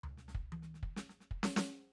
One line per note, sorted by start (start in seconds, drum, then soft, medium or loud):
0.07 floor tom medium
0.18 snare soft
0.28 snare soft
0.35 kick soft
0.52 high tom medium
0.62 snare soft
0.74 snare soft
0.83 kick soft
0.96 snare medium
1.09 snare soft
1.20 snare soft
1.31 kick soft
1.43 snare medium
1.56 snare medium